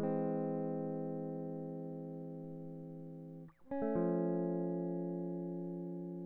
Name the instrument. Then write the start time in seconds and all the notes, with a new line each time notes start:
electric guitar
0.00 E3 G#3
0.04 C4
3.73 C#4
3.83 A3
3.97 F3